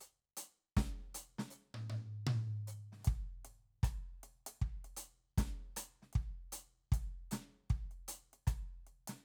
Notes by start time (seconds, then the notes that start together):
0.01 closed hi-hat
0.37 closed hi-hat
0.77 kick, snare, closed hi-hat
0.99 snare
1.15 closed hi-hat
1.39 snare
1.51 hi-hat pedal
1.75 high tom
1.90 high tom
2.27 high tom
2.68 hi-hat pedal
2.92 snare
2.97 snare
3.00 snare
3.03 snare, closed hi-hat
3.08 kick
3.45 closed hi-hat
3.83 kick, cross-stick, closed hi-hat
4.24 closed hi-hat
4.47 closed hi-hat
4.62 kick
4.85 closed hi-hat
4.97 closed hi-hat
5.38 kick, snare, closed hi-hat
5.77 closed hi-hat, cross-stick
6.02 snare
6.13 kick, closed hi-hat
6.53 closed hi-hat
6.92 kick, closed hi-hat
7.31 closed hi-hat, snare
7.70 kick, closed hi-hat
7.91 closed hi-hat
8.08 closed hi-hat
8.33 closed hi-hat
8.47 kick, cross-stick, closed hi-hat
8.87 closed hi-hat
9.08 snare, closed hi-hat